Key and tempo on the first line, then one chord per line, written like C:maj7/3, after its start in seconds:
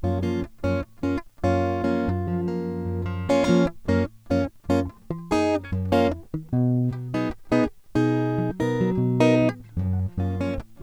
F# major, 147 BPM
0.00 F#:maj7
6.53 B:maj6(b5,*5)
9.80 F#:maj7